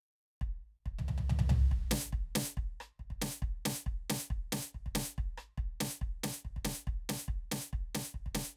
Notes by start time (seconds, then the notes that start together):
0.41 kick
0.86 kick
0.99 floor tom
1.08 floor tom
1.18 floor tom
1.29 floor tom
1.39 floor tom
1.49 floor tom
1.71 kick
1.91 snare
2.12 kick, snare
2.35 snare
2.57 kick, snare
2.80 cross-stick
2.99 kick
3.10 kick
3.22 snare
3.42 kick
3.65 snare
3.86 kick, snare
4.10 snare
4.30 kick
4.52 snare
4.74 kick
4.86 kick
4.95 snare
5.18 kick
5.37 cross-stick
5.58 kick
5.80 snare
6.01 kick
6.23 snare
6.41 kick, snare
6.56 kick
6.65 snare
6.87 kick
7.09 snare
7.28 kick
7.51 snare
7.73 kick
7.95 snare
8.14 kick
8.26 kick
8.35 snare